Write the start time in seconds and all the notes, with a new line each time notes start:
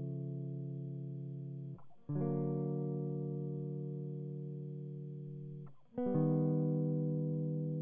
2.10 D3
2.16 F#3
2.21 A#3
5.98 B3
6.07 G3
6.16 D#3